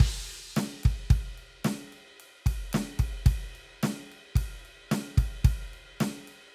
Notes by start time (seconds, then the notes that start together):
0.02 kick, crash
0.29 ride
0.56 snare, ride
0.84 kick, ride
1.10 kick, ride
1.38 ride
1.65 snare, ride
1.93 ride
2.20 ride
2.46 kick, ride
2.73 snare, ride
2.99 kick, ride
3.26 kick, ride
3.55 ride
3.83 snare, ride
4.12 ride
4.36 kick, ride
4.65 ride
4.91 snare, ride
5.18 kick, ride
5.45 kick, ride
5.74 ride
6.00 snare, ride
6.28 ride